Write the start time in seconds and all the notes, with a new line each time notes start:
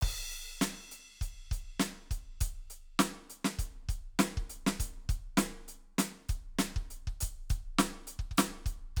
0.01 kick, hi-hat pedal, crash
0.31 closed hi-hat
0.61 closed hi-hat, snare
0.91 closed hi-hat
1.21 closed hi-hat, kick
1.51 closed hi-hat, kick
1.79 closed hi-hat, snare
2.11 closed hi-hat, kick
2.41 closed hi-hat, kick
2.70 closed hi-hat
2.99 closed hi-hat, snare
3.30 closed hi-hat
3.44 snare
3.59 closed hi-hat, kick
3.89 closed hi-hat, kick
4.19 closed hi-hat, snare
4.37 kick
4.50 closed hi-hat
4.66 snare
4.80 closed hi-hat, kick
5.09 closed hi-hat, kick
5.37 closed hi-hat, snare
5.68 closed hi-hat
5.98 closed hi-hat, snare
6.29 closed hi-hat, kick
6.58 closed hi-hat, snare
6.76 kick
6.90 closed hi-hat
7.07 kick
7.20 closed hi-hat, kick
7.50 closed hi-hat, kick
7.79 closed hi-hat, snare
8.07 closed hi-hat
8.19 kick
8.31 kick
8.37 closed hi-hat, snare
8.66 closed hi-hat, kick
8.96 kick, crash